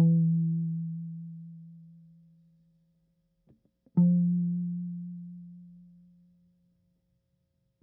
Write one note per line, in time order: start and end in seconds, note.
0.00 1.92 E3
3.98 5.81 F3